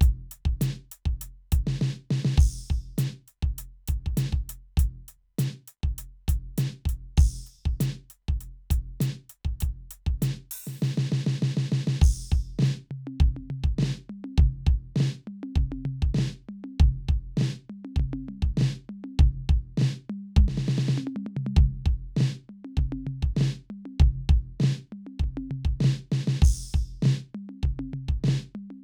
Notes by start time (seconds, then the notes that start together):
0.01 closed hi-hat, kick
0.31 closed hi-hat
0.45 kick
0.61 closed hi-hat, snare
0.92 closed hi-hat
1.06 kick
1.21 closed hi-hat
1.52 closed hi-hat, kick
1.67 snare
1.81 snare
2.11 snare
2.25 snare
2.38 kick, crash
2.70 kick
2.98 closed hi-hat, snare
3.28 closed hi-hat
3.43 kick, snare
3.58 closed hi-hat
3.88 closed hi-hat, kick
4.06 kick
4.17 closed hi-hat, snare
4.33 kick
4.49 closed hi-hat
4.77 closed hi-hat, kick
5.08 closed hi-hat
5.39 closed hi-hat, snare
5.68 closed hi-hat
5.83 kick
5.98 closed hi-hat
6.28 closed hi-hat, kick
6.58 closed hi-hat, snare
6.86 closed hi-hat, kick
7.13 snare
7.17 kick, crash
7.32 hi-hat pedal
7.46 closed hi-hat
7.66 kick, snare
7.81 closed hi-hat, snare
8.10 closed hi-hat
8.28 kick
8.41 closed hi-hat
8.71 closed hi-hat, kick
9.01 closed hi-hat, snare
9.30 closed hi-hat
9.45 kick
9.61 closed hi-hat, kick
9.91 closed hi-hat
10.06 kick
10.22 closed hi-hat, snare
10.51 open hi-hat
10.67 snare
10.82 snare
10.98 snare
11.12 snare
11.27 snare
11.42 snare
11.57 snare
11.72 snare
11.87 snare
12.02 kick, crash
12.32 kick
12.59 snare
12.63 snare, hi-hat pedal
12.91 floor tom
13.07 high tom
13.20 kick, floor tom
13.37 high tom
13.50 floor tom
13.64 kick
13.79 snare
13.83 snare
14.10 mid tom
14.24 high tom
14.38 kick, floor tom
14.67 kick
14.96 snare
15.00 snare
15.27 mid tom
15.43 high tom
15.56 kick, floor tom
15.72 high tom
15.85 floor tom
16.02 kick
16.15 snare
16.19 snare
16.49 mid tom
16.64 high tom
16.80 kick, floor tom
17.09 kick
17.37 snare
17.41 snare
17.70 mid tom
17.85 high tom
17.96 kick, floor tom
18.13 high tom
18.29 mid tom
18.42 kick
18.57 snare
18.61 snare
18.89 mid tom
19.04 high tom
19.19 kick, floor tom
19.49 kick
19.78 snare
19.82 snare
20.10 mid tom
20.37 kick, mid tom
20.48 snare
20.58 snare
20.68 snare
20.78 snare
20.82 hi-hat pedal
20.89 snare
20.98 high tom
21.07 high tom
21.16 mid tom
21.27 mid tom
21.37 floor tom
21.47 mid tom
21.57 kick, floor tom
21.86 kick
22.17 snare
22.21 snare
22.49 mid tom
22.65 high tom
22.77 kick, floor tom
22.92 high tom
23.07 floor tom
23.23 kick
23.37 snare
23.41 snare
23.70 mid tom
23.86 high tom
24.00 kick, floor tom
24.29 kick
24.60 snare
24.64 snare
24.92 mid tom
25.07 high tom
25.20 kick
25.24 floor tom
25.37 high tom
25.51 floor tom
25.65 kick
25.81 snare
25.84 snare
26.12 snare
26.28 snare
26.42 kick, crash
26.74 kick
27.03 snare
27.05 snare
27.35 mid tom
27.49 high tom
27.63 kick, floor tom
27.79 high tom
27.94 floor tom
28.09 kick
28.24 snare
28.28 snare
28.55 mid tom
28.71 high tom